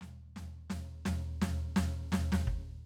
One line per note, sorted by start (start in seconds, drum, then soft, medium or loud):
0.01 snare soft
0.01 floor tom soft
0.36 snare soft
0.36 floor tom medium
0.70 snare medium
0.70 floor tom medium
1.05 snare medium
1.05 floor tom loud
1.42 snare medium
1.42 floor tom loud
1.76 snare loud
1.76 floor tom loud
2.09 snare medium
2.09 floor tom loud
2.09 hi-hat pedal soft
2.32 snare medium
2.32 floor tom loud
2.47 kick medium